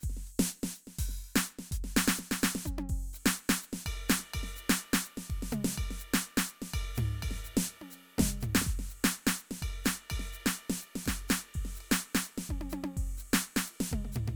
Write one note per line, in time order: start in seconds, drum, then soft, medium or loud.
0.01 kick soft
0.01 hi-hat pedal medium
0.01 crash medium
0.10 kick soft
0.10 snare soft
0.13 kick soft
0.17 snare soft
0.28 closed hi-hat soft
0.40 snare loud
0.46 hi-hat pedal soft
0.52 closed hi-hat soft
0.64 snare medium
0.74 closed hi-hat soft
0.74 hi-hat pedal medium
0.88 snare soft
0.99 open hi-hat loud
0.99 kick soft
1.06 kick soft
1.06 snare soft
1.25 open hi-hat soft
1.36 snare loud
1.44 hi-hat pedal medium
1.49 closed hi-hat medium
1.59 snare soft
1.72 closed hi-hat loud
1.72 kick soft
1.78 kick soft
1.81 kick soft
1.81 snare soft
1.97 snare loud
2.08 snare loud
2.16 snare soft
2.16 hi-hat pedal loud
2.32 snare medium
2.42 snare loud
2.42 hi-hat pedal loud
2.56 snare medium
2.66 kick soft
2.66 hi-hat pedal loud
2.66 high tom medium
2.75 kick soft
2.75 high tom loud
2.90 kick medium
2.90 crash medium
2.99 kick soft
3.14 hi-hat pedal medium
3.14 ride medium
3.27 snare loud
3.36 hi-hat pedal medium
3.36 ride soft
3.50 snare loud
3.62 hi-hat pedal medium
3.74 snare medium
3.87 kick soft
3.87 ride bell loud
3.95 kick soft
4.09 snare loud
4.09 hi-hat pedal medium
4.09 ride loud
4.20 snare soft
4.34 kick soft
4.34 ride bell loud
4.41 kick soft
4.41 snare soft
4.56 hi-hat pedal loud
4.56 ride soft
4.70 snare loud
4.84 ride medium
4.94 snare loud
5.04 hi-hat pedal medium
5.04 ride soft
5.18 snare medium
5.30 kick soft
5.30 ride loud
5.36 kick soft
5.40 kick soft
5.40 snare medium
5.51 hi-hat pedal medium
5.51 mid tom loud
5.65 snare loud
5.78 kick soft
5.78 ride bell loud
5.84 kick soft
5.88 kick soft
5.88 snare soft
5.99 hi-hat pedal loud
6.04 ride medium
6.14 snare loud
6.21 hi-hat pedal soft
6.28 ride soft
6.38 snare loud
6.47 hi-hat pedal medium
6.52 ride medium
6.62 snare medium
6.74 kick soft
6.74 ride bell loud
6.80 kick soft
6.84 kick soft
6.96 hi-hat pedal medium
6.96 ride loud
6.96 floor tom loud
7.23 kick soft
7.23 ride bell loud
7.30 kick soft
7.30 snare soft
7.33 kick soft
7.45 hi-hat pedal loud
7.45 ride medium
7.58 snare loud
7.71 ride medium
7.82 high tom medium
7.91 hi-hat pedal medium
7.91 ride medium
8.19 kick soft
8.19 snare loud
8.19 mid tom loud
8.27 kick soft
8.30 kick soft
8.41 kick soft
8.41 floor tom medium
8.41 hi-hat pedal medium
8.56 snare loud
8.62 snare medium
8.67 kick medium
8.67 crash medium
8.74 kick soft
8.80 snare soft
8.89 hi-hat pedal medium
8.89 ride medium
9.05 snare loud
9.17 ride medium
9.28 snare loud
9.38 hi-hat pedal medium
9.38 ride medium
9.52 snare medium
9.63 kick soft
9.63 ride bell loud
9.69 kick soft
9.71 kick soft
9.85 snare loud
9.85 hi-hat pedal medium
9.85 ride medium
10.11 kick soft
10.11 ride bell loud
10.18 kick soft
10.18 snare soft
10.21 kick soft
10.33 hi-hat pedal medium
10.33 ride soft
10.47 snare loud
10.60 ride medium
10.70 snare medium
10.81 hi-hat pedal medium
10.81 ride medium
10.96 snare medium
11.06 kick soft
11.06 snare medium
11.06 ride loud
11.29 snare loud
11.29 hi-hat pedal medium
11.29 ride loud
11.55 kick soft
11.55 crash medium
11.62 kick soft
11.65 kick soft
11.65 snare soft
11.75 hi-hat pedal medium
11.81 ride bell medium
11.92 snare loud
12.04 ride medium
12.16 snare loud
12.23 hi-hat pedal medium
12.23 ride medium
12.38 snare medium
12.50 kick soft
12.50 high tom medium
12.56 kick soft
12.59 kick soft
12.59 high tom medium
12.70 hi-hat pedal medium
12.70 high tom loud
12.85 high tom loud
12.98 kick medium
12.98 crash medium
13.04 kick soft
13.18 hi-hat pedal medium
13.23 ride medium
13.34 snare loud
13.46 ride medium
13.57 snare loud
13.66 hi-hat pedal medium
13.66 ride loud
13.81 snare medium
13.92 kick soft
13.92 mid tom loud
13.98 kick soft
14.01 kick soft
14.05 mid tom medium
14.13 floor tom medium
14.13 hi-hat pedal medium
14.28 floor tom medium